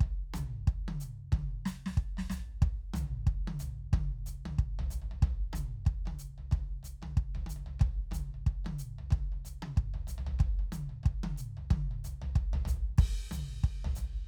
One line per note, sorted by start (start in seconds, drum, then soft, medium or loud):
0.01 kick medium
0.01 floor tom medium
0.34 floor tom medium
0.34 hi-hat pedal medium
0.34 high tom loud
0.68 kick medium
0.68 floor tom soft
0.89 high tom loud
1.01 floor tom soft
1.01 hi-hat pedal medium
1.33 kick medium
1.33 floor tom medium
1.33 high tom loud
1.66 snare medium
1.66 floor tom soft
1.66 hi-hat pedal medium
1.86 snare medium
1.86 floor tom medium
1.98 kick medium
2.18 snare medium
2.18 floor tom medium
2.30 snare medium
2.30 floor tom medium
2.30 hi-hat pedal medium
2.62 kick loud
2.62 floor tom medium
2.94 floor tom loud
2.94 hi-hat pedal medium
2.94 high tom loud
3.27 kick medium
3.27 floor tom soft
3.48 high tom loud
3.60 floor tom medium
3.60 hi-hat pedal medium
3.93 kick medium
3.93 floor tom medium
3.93 high tom loud
4.27 floor tom medium
4.27 hi-hat pedal medium
4.46 floor tom medium
4.46 high tom loud
4.59 kick medium
4.79 floor tom loud
4.91 floor tom medium
4.91 hi-hat pedal medium
5.02 floor tom medium
5.12 floor tom medium
5.23 kick loud
5.23 floor tom loud
5.53 floor tom medium
5.53 hi-hat pedal medium
5.53 high tom loud
5.86 kick medium
5.86 floor tom medium
6.06 floor tom medium
6.06 high tom loud
6.19 hi-hat pedal medium
6.38 floor tom medium
6.52 kick medium
6.52 floor tom medium
6.52 high tom medium
6.83 floor tom medium
6.83 hi-hat pedal medium
7.02 floor tom medium
7.02 high tom loud
7.17 kick medium
7.35 floor tom medium
7.47 hi-hat pedal medium
7.47 high tom medium
7.57 floor tom soft
7.80 kick loud
7.80 floor tom loud
8.12 floor tom medium
8.12 hi-hat pedal medium
8.12 high tom loud
8.35 floor tom soft
8.47 kick medium
8.47 floor tom soft
8.65 floor tom medium
8.65 high tom loud
8.79 hi-hat pedal medium
8.99 floor tom medium
9.11 kick medium
9.11 floor tom medium
9.11 high tom medium
9.32 floor tom soft
9.45 floor tom medium
9.45 hi-hat pedal medium
9.63 high tom loud
9.77 kick medium
9.77 floor tom soft
9.94 floor tom medium
10.08 floor tom medium
10.08 hi-hat pedal medium
10.19 floor tom medium
10.27 floor tom loud
10.39 kick medium
10.39 floor tom medium
10.60 kick soft
10.60 floor tom soft
10.73 hi-hat pedal medium
10.73 high tom loud
10.90 floor tom soft
11.04 kick medium
11.04 floor tom medium
11.24 high tom loud
11.37 floor tom soft
11.37 hi-hat pedal medium
11.57 floor tom medium
11.71 kick medium
11.71 high tom loud
11.92 floor tom soft
12.05 floor tom medium
12.05 hi-hat pedal medium
12.22 floor tom loud
12.36 kick medium
12.36 floor tom medium
12.54 floor tom loud
12.66 floor tom loud
12.66 hi-hat pedal medium
12.98 kick loud
12.98 floor tom medium
12.98 crash medium
13.32 floor tom medium
13.32 hi-hat pedal medium
13.32 high tom loud
13.64 kick medium
13.64 floor tom soft
13.85 floor tom loud
13.96 floor tom medium
13.96 hi-hat pedal medium